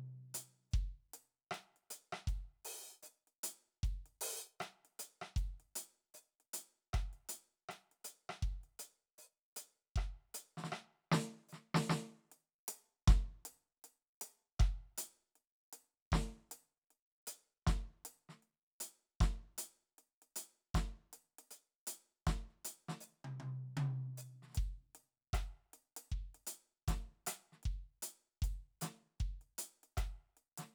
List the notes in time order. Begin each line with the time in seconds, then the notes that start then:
0.35 open hi-hat
0.71 kick, hi-hat pedal
0.76 closed hi-hat
1.14 closed hi-hat
1.51 cross-stick, closed hi-hat
1.76 closed hi-hat
1.91 closed hi-hat
2.13 cross-stick
2.28 kick, closed hi-hat
2.65 open hi-hat
3.03 closed hi-hat, hi-hat pedal
3.28 closed hi-hat
3.44 closed hi-hat
3.83 kick, closed hi-hat
4.06 closed hi-hat
4.21 open hi-hat
4.60 cross-stick, closed hi-hat, hi-hat pedal
4.85 closed hi-hat
5.00 closed hi-hat
5.22 cross-stick
5.37 kick, closed hi-hat
5.60 closed hi-hat
5.76 open hi-hat
6.14 closed hi-hat, hi-hat pedal
6.40 closed hi-hat
6.54 closed hi-hat
6.94 kick, cross-stick, closed hi-hat
7.13 closed hi-hat
7.29 closed hi-hat
7.69 cross-stick, closed hi-hat
7.92 closed hi-hat
8.05 closed hi-hat
8.29 cross-stick
8.43 kick, closed hi-hat
8.64 closed hi-hat
8.79 open hi-hat
9.18 hi-hat pedal
9.57 closed hi-hat
9.96 kick, cross-stick, closed hi-hat
10.35 closed hi-hat
10.58 snare
10.64 snare
10.69 cross-stick, snare
11.12 snare, hi-hat pedal
11.49 hi-hat pedal
11.53 snare
11.75 snare
11.87 snare, hi-hat pedal
12.32 closed hi-hat
12.68 closed hi-hat
13.08 kick, snare, closed hi-hat
13.46 closed hi-hat
13.84 closed hi-hat
14.22 closed hi-hat
14.60 kick, cross-stick, closed hi-hat
14.98 closed hi-hat
15.36 closed hi-hat
15.73 closed hi-hat
16.12 kick, snare, closed hi-hat
16.52 closed hi-hat
16.91 closed hi-hat
17.27 closed hi-hat
17.67 kick, snare, closed hi-hat
18.05 closed hi-hat
18.29 snare
18.43 closed hi-hat
18.81 closed hi-hat
19.21 kick, snare, closed hi-hat
19.58 closed hi-hat
19.99 closed hi-hat
20.22 closed hi-hat
20.36 closed hi-hat
20.75 kick, snare, closed hi-hat
21.13 closed hi-hat
21.39 closed hi-hat
21.51 closed hi-hat
21.87 closed hi-hat
22.27 kick, snare, closed hi-hat
22.49 snare
22.65 closed hi-hat
22.89 snare
23.01 hi-hat pedal
23.25 high tom
23.40 high tom
23.77 high tom
24.18 hi-hat pedal
24.43 snare
24.47 snare
24.50 snare
24.53 snare, closed hi-hat
24.58 kick
24.95 closed hi-hat
25.33 kick, cross-stick, closed hi-hat
25.74 closed hi-hat
25.97 closed hi-hat
26.12 kick
26.35 closed hi-hat
26.47 closed hi-hat
26.88 kick, snare, closed hi-hat
27.27 closed hi-hat, cross-stick
27.53 snare
27.63 kick, closed hi-hat
28.03 closed hi-hat
28.42 kick, closed hi-hat
28.82 closed hi-hat, snare
29.20 kick, closed hi-hat
29.41 closed hi-hat
29.58 closed hi-hat
29.84 closed hi-hat
29.97 kick, cross-stick, closed hi-hat
30.37 closed hi-hat
30.58 snare, closed hi-hat